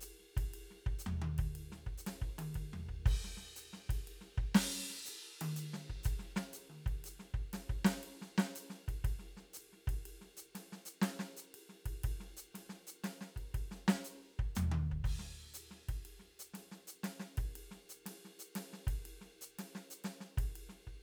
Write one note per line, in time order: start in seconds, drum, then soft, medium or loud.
0.01 hi-hat pedal medium
0.01 ride medium
0.20 snare soft
0.37 kick medium
0.37 ride medium
0.54 ride medium
0.71 snare soft
0.86 kick medium
0.99 hi-hat pedal medium
1.07 floor tom medium
1.22 high tom medium
1.38 kick soft
1.38 ride soft
1.44 hi-hat pedal soft
1.56 ride soft
1.72 snare soft
1.87 kick soft
1.98 hi-hat pedal medium
2.07 snare medium
2.07 ride medium
2.22 kick soft
2.39 high tom medium
2.39 ride medium
2.55 kick soft
2.55 ride soft
2.74 floor tom medium
2.89 kick soft
3.06 kick medium
3.06 crash medium
3.24 snare soft
3.37 snare soft
3.56 hi-hat pedal medium
3.56 ride soft
3.73 snare soft
3.90 kick medium
3.90 ride medium
4.08 ride soft
4.21 snare soft
4.38 kick medium
4.55 snare loud
4.55 crash medium
4.90 snare soft
5.06 hi-hat pedal medium
5.06 ride medium
5.41 high tom medium
5.41 ride medium
5.56 hi-hat pedal medium
5.56 ride soft
5.74 snare soft
5.90 kick soft
6.04 kick medium
6.04 hi-hat pedal medium
6.04 ride medium
6.19 snare soft
6.36 snare medium
6.53 hi-hat pedal medium
6.53 ride medium
6.70 high tom soft
6.86 kick medium
6.86 ride soft
7.04 hi-hat pedal medium
7.04 ride soft
7.20 snare soft
7.34 kick soft
7.53 snare medium
7.53 ride medium
7.70 kick soft
7.85 snare loud
7.85 ride medium
8.03 ride medium
8.22 snare soft
8.38 snare loud
8.56 hi-hat pedal medium
8.56 ride medium
8.70 snare soft
8.88 kick soft
8.88 ride soft
9.04 kick medium
9.04 ride medium
9.19 snare soft
9.37 snare soft
9.54 hi-hat pedal medium
9.54 ride soft
9.73 snare soft
9.88 kick medium
9.88 ride soft
10.06 ride medium
10.21 snare soft
10.37 hi-hat pedal medium
10.55 snare soft
10.55 ride medium
10.73 snare soft
10.86 hi-hat pedal medium
11.02 snare medium
11.02 ride medium
11.20 snare medium
11.37 hi-hat pedal medium
11.55 hi-hat pedal soft
11.55 ride medium
11.69 snare soft
11.86 kick soft
11.86 ride medium
12.04 kick medium
12.04 ride medium
12.20 snare soft
12.37 hi-hat pedal medium
12.55 snare soft
12.55 ride medium
12.70 snare soft
12.87 hi-hat pedal medium
13.04 snare medium
13.04 ride medium
13.21 snare soft
13.36 kick soft
13.36 ride soft
13.54 kick soft
13.54 ride soft
13.71 snare soft
13.88 snare loud
14.05 hi-hat pedal medium
14.05 ride soft
14.39 kick medium
14.56 floor tom loud
14.56 hi-hat pedal medium
14.72 high tom medium
14.92 kick soft
15.04 kick medium
15.04 crash medium
15.19 snare soft
15.40 snare soft
15.54 hi-hat pedal medium
15.54 ride soft
15.71 snare soft
15.89 kick soft
15.89 ride soft
16.05 ride soft
16.20 snare soft
16.40 hi-hat pedal medium
16.54 snare soft
16.54 ride medium
16.72 snare soft
16.88 hi-hat pedal medium
17.04 snare medium
17.04 ride medium
17.20 snare soft
17.38 kick soft
17.38 ride medium
17.56 ride medium
17.71 snare soft
17.90 hi-hat pedal medium
18.06 snare soft
18.06 ride medium
18.25 snare soft
18.40 hi-hat pedal medium
18.56 snare medium
18.56 ride medium
18.73 snare soft
18.87 kick medium
18.87 ride medium
19.06 ride soft
19.21 snare soft
19.41 hi-hat pedal medium
19.59 snare soft
19.59 ride medium
19.75 snare soft
19.91 hi-hat pedal medium
20.04 snare medium
20.04 ride soft
20.21 snare soft
20.38 kick medium
20.38 ride medium
20.56 ride soft
20.69 snare soft
20.87 kick soft